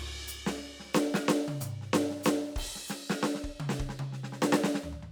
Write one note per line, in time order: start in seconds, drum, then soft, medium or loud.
0.28 hi-hat pedal loud
0.47 snare loud
0.65 snare soft
0.80 snare soft
0.85 snare soft
0.89 snare soft
0.93 snare soft
0.93 snare loud
0.93 hi-hat pedal loud
1.14 snare loud
1.28 snare loud
1.48 high tom loud
1.61 hi-hat pedal loud
1.61 mid tom loud
1.81 snare soft
1.85 snare soft
1.93 snare loud
2.10 snare soft
2.16 snare soft
2.20 snare soft
2.20 hi-hat pedal loud
2.26 snare loud
2.40 snare soft
2.45 snare soft
2.49 snare soft
2.54 kick medium
2.54 snare soft
2.58 crash loud
2.75 snare soft
2.88 snare medium
2.88 hi-hat pedal loud
3.10 snare loud
3.23 snare loud
3.35 snare medium
3.44 kick soft
3.60 high tom loud
3.69 snare loud
3.80 kick medium
3.89 snare medium
3.99 high tom loud
4.13 snare soft
4.24 snare medium
4.32 snare medium
4.42 snare loud
4.52 snare loud
4.64 snare loud
4.74 snare medium
4.84 floor tom medium
4.93 floor tom medium
5.03 floor tom medium